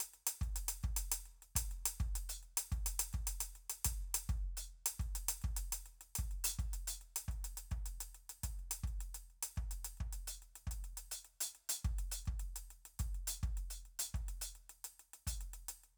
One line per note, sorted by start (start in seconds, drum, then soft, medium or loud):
0.01 closed hi-hat loud
0.14 closed hi-hat soft
0.27 closed hi-hat loud
0.42 kick soft
0.42 closed hi-hat soft
0.57 closed hi-hat medium
0.69 closed hi-hat loud
0.84 kick soft
0.84 closed hi-hat soft
0.97 closed hi-hat loud
1.12 closed hi-hat loud
1.26 closed hi-hat soft
1.43 closed hi-hat soft
1.56 kick soft
1.56 closed hi-hat loud
1.72 closed hi-hat soft
1.86 closed hi-hat loud
2.01 kick soft
2.01 closed hi-hat soft
2.16 closed hi-hat medium
2.30 closed hi-hat medium
2.43 closed hi-hat soft
2.58 closed hi-hat loud
2.72 kick soft
2.72 closed hi-hat soft
2.87 closed hi-hat loud
3.00 closed hi-hat loud
3.14 kick soft
3.14 closed hi-hat soft
3.28 closed hi-hat medium
3.41 closed hi-hat loud
3.56 closed hi-hat soft
3.70 closed hi-hat medium
3.85 kick soft
3.85 closed hi-hat loud
4.03 closed hi-hat soft
4.15 closed hi-hat loud
4.30 kick soft
4.30 closed hi-hat soft
4.58 closed hi-hat medium
4.87 closed hi-hat loud
5.00 kick soft
5.00 closed hi-hat soft
5.16 closed hi-hat medium
5.29 closed hi-hat loud
5.42 kick soft
5.42 closed hi-hat soft
5.57 closed hi-hat medium
5.73 closed hi-hat loud
5.86 closed hi-hat soft
6.02 closed hi-hat soft
6.16 kick soft
6.16 closed hi-hat medium
6.32 closed hi-hat soft
6.45 closed hi-hat loud
6.59 kick soft
6.59 closed hi-hat soft
6.74 closed hi-hat medium
6.88 closed hi-hat medium
7.02 closed hi-hat soft
7.17 closed hi-hat loud
7.29 kick soft
7.29 closed hi-hat soft
7.45 closed hi-hat medium
7.58 closed hi-hat medium
7.72 kick soft
7.72 closed hi-hat soft
7.86 closed hi-hat medium
8.01 closed hi-hat medium
8.15 closed hi-hat soft
8.30 closed hi-hat medium
8.44 kick soft
8.44 closed hi-hat medium
8.60 closed hi-hat soft
8.72 closed hi-hat loud
8.84 kick soft
8.88 closed hi-hat soft
9.01 closed hi-hat soft
9.15 closed hi-hat medium
9.31 closed hi-hat soft
9.43 closed hi-hat loud
9.57 kick soft
9.57 closed hi-hat soft
9.72 closed hi-hat medium
9.85 closed hi-hat medium
9.98 kick soft
9.98 closed hi-hat soft
10.13 closed hi-hat medium
10.28 closed hi-hat medium
10.43 closed hi-hat soft
10.56 closed hi-hat soft
10.67 kick soft
10.72 closed hi-hat medium
10.85 closed hi-hat soft
10.98 closed hi-hat medium
11.12 closed hi-hat medium
11.25 closed hi-hat soft
11.41 closed hi-hat loud
11.56 closed hi-hat soft
11.70 closed hi-hat loud
11.85 kick soft
11.85 closed hi-hat soft
11.99 closed hi-hat soft
12.12 closed hi-hat medium
12.26 kick soft
12.26 closed hi-hat soft
12.40 closed hi-hat soft
12.57 closed hi-hat medium
12.71 closed hi-hat soft
12.86 closed hi-hat soft
13.00 kick soft
13.00 closed hi-hat medium
13.15 closed hi-hat soft
13.28 closed hi-hat loud
13.44 kick soft
13.44 closed hi-hat soft
13.58 closed hi-hat soft
13.71 closed hi-hat medium
13.86 closed hi-hat soft
14.00 closed hi-hat loud
14.15 kick soft
14.15 closed hi-hat soft
14.29 closed hi-hat soft
14.42 closed hi-hat medium
14.56 closed hi-hat soft
14.70 closed hi-hat soft
14.85 closed hi-hat medium
15.00 closed hi-hat soft
15.14 closed hi-hat soft
15.27 closed hi-hat medium
15.27 kick soft
15.41 closed hi-hat soft
15.54 closed hi-hat soft
15.69 closed hi-hat medium
15.84 closed hi-hat soft